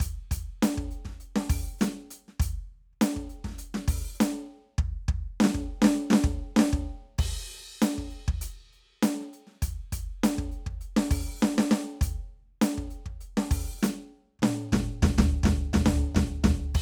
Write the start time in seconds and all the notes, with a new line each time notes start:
0.01 closed hi-hat, kick, snare
0.32 closed hi-hat, kick
0.63 closed hi-hat, snare
0.78 kick
0.92 closed hi-hat
1.06 kick, snare
1.10 snare, crash
1.13 snare
1.21 closed hi-hat
1.37 snare
1.50 open hi-hat, kick
1.79 closed hi-hat, snare, hi-hat pedal
2.05 kick
2.11 closed hi-hat
2.29 snare
2.41 closed hi-hat, kick
2.94 kick
3.02 closed hi-hat, snare
3.17 kick
3.30 closed hi-hat
3.45 kick, snare
3.49 snare
3.52 snare
3.56 closed hi-hat, snare
3.75 snare
3.89 open hi-hat, kick
4.17 hi-hat pedal
4.21 closed hi-hat, snare
4.79 kick
5.09 kick
5.41 snare
5.45 snare
5.55 kick
5.83 snare
5.85 snare
6.11 snare
6.14 snare
6.25 kick
6.57 snare
6.60 snare
6.74 kick
7.19 kick, crash
7.83 closed hi-hat, snare
7.99 kick
8.11 closed hi-hat
8.29 kick
8.42 closed hi-hat
8.74 closed hi-hat
9.04 closed hi-hat, snare
9.21 snare
9.34 closed hi-hat
9.48 snare
9.52 snare
9.56 snare
9.63 closed hi-hat, kick
9.93 closed hi-hat, kick
10.24 closed hi-hat, snare
10.39 kick
10.52 closed hi-hat
10.67 kick, crash
10.72 ride
10.82 closed hi-hat
10.97 snare
11.12 open hi-hat, kick
11.41 snare, hi-hat pedal
11.59 snare
11.72 snare
12.02 closed hi-hat, kick
12.62 closed hi-hat, snare
12.79 kick
12.91 closed hi-hat
13.07 kick
13.11 ride
13.21 closed hi-hat
13.38 snare
13.52 open hi-hat, kick
13.82 closed hi-hat, snare, hi-hat pedal
14.40 kick, mid tom
14.44 snare
14.73 kick, snare, mid tom
15.03 kick, snare, floor tom
15.19 kick, snare, floor tom
15.44 kick, snare, floor tom
15.74 kick, snare, floor tom
15.87 snare, floor tom
16.16 kick, snare, floor tom
16.45 kick, snare, floor tom
16.75 kick, crash